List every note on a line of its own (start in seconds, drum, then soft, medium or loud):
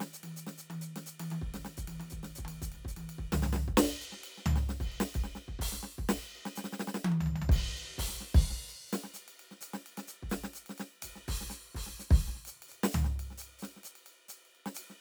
0.01 snare medium
0.01 ride medium
0.14 hi-hat pedal medium
0.24 high tom medium
0.24 ride medium
0.37 hi-hat pedal medium
0.47 snare medium
0.47 ride medium
0.58 hi-hat pedal medium
0.70 high tom medium
0.70 ride medium
0.82 hi-hat pedal medium
0.96 snare medium
0.96 ride medium
1.07 hi-hat pedal medium
1.20 high tom medium
1.20 ride medium
1.31 high tom medium
1.31 ride medium
1.42 kick medium
1.54 snare medium
1.54 ride medium
1.65 snare medium
1.65 ride medium
1.77 kick medium
1.77 hi-hat pedal medium
1.88 high tom medium
1.88 ride medium
2.00 high tom medium
2.00 ride medium
2.10 kick soft
2.10 hi-hat pedal medium
2.23 snare soft
2.23 ride medium
2.36 kick medium
2.36 hi-hat pedal medium
2.45 high tom soft
2.45 ride medium
2.62 kick medium
2.62 hi-hat pedal medium
2.72 snare soft
2.72 ride medium
2.85 kick medium
2.85 hi-hat pedal medium
2.97 high tom medium
2.97 ride medium
3.09 ride medium
3.19 kick medium
3.33 snare loud
3.33 floor tom loud
3.46 floor tom medium
3.53 snare medium
3.53 floor tom medium
3.68 kick medium
3.77 snare loud
3.77 ride medium
4.01 hi-hat pedal medium
4.01 ride soft
4.12 snare soft
4.24 ride medium
4.38 snare soft
4.46 floor tom loud
4.56 snare medium
4.69 snare medium
4.80 kick medium
4.80 ride medium
4.92 ride soft
5.00 snare loud
5.15 kick medium
5.15 ride medium
5.24 snare soft
5.36 snare soft
5.48 kick medium
5.59 kick medium
5.59 crash medium
5.73 snare soft
5.83 snare soft
5.99 kick medium
6.09 snare loud
6.09 ride medium
6.35 ride soft
6.46 snare medium
6.56 snare medium
6.56 hi-hat pedal medium
6.65 snare medium
6.73 snare medium
6.80 snare medium
6.88 snare medium
6.95 snare medium
7.05 high tom loud
7.12 high tom medium
7.21 floor tom medium
7.26 floor tom medium
7.36 floor tom medium
7.42 floor tom medium
7.50 kick loud
7.50 ride loud
7.77 ride bell soft
7.99 kick medium
7.99 crash medium
8.08 snare soft
8.21 snare soft
8.35 kick loud
8.35 crash medium
8.50 snare soft
8.63 snare soft
8.68 hi-hat pedal soft
8.68 ride soft
8.88 hi-hat pedal soft
8.93 snare loud
8.93 ride medium
9.04 snare soft
9.14 snare soft
9.14 hi-hat pedal medium
9.14 ride medium
9.27 snare soft
9.27 ride medium
9.40 ride medium
9.51 snare soft
9.61 hi-hat pedal medium
9.61 ride medium
9.74 snare medium
9.86 ride medium
9.98 snare medium
9.98 ride medium
10.08 hi-hat pedal medium
10.08 ride soft
10.23 kick medium
10.30 snare medium
10.30 hi-hat pedal soft
10.30 ride medium
10.44 snare medium
10.54 hi-hat pedal medium
10.54 ride medium
10.67 snare medium
10.67 ride medium
10.77 snare medium
10.77 hi-hat pedal soft
10.77 ride medium
11.02 kick soft
11.02 hi-hat pedal medium
11.02 ride loud
11.16 snare soft
11.28 kick medium
11.28 crash medium
11.41 snare soft
11.50 snare soft
11.50 hi-hat pedal medium
11.75 kick medium
11.75 crash medium
11.87 snare soft
12.00 snare soft
12.00 hi-hat pedal medium
12.09 kick loud
12.09 snare soft
12.09 crash medium
12.28 snare soft
12.35 snare soft
12.46 hi-hat pedal medium
12.46 ride medium
12.62 ride medium
12.69 hi-hat pedal soft
12.69 ride medium
12.84 snare loud
12.92 floor tom loud
12.92 hi-hat pedal medium
13.05 snare soft
13.20 ride medium
13.31 snare soft
13.38 hi-hat pedal medium
13.42 ride medium
13.59 snare medium
13.59 hi-hat pedal soft
13.65 ride medium
13.77 snare soft
13.84 hi-hat pedal medium
13.84 ride medium
13.96 ride medium
14.05 hi-hat pedal soft
14.05 ride medium
14.29 hi-hat pedal medium
14.29 ride medium
14.46 ride soft
14.50 hi-hat pedal soft
14.55 ride soft
14.66 snare medium
14.75 hi-hat pedal medium
14.75 ride loud
14.90 snare soft